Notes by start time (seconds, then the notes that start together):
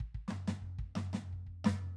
0.01 kick
0.15 kick
0.28 snare, floor tom
0.48 snare, floor tom
0.62 kick
0.79 kick
0.96 snare, floor tom
1.14 snare, floor tom
1.33 kick
1.47 kick
1.65 snare, floor tom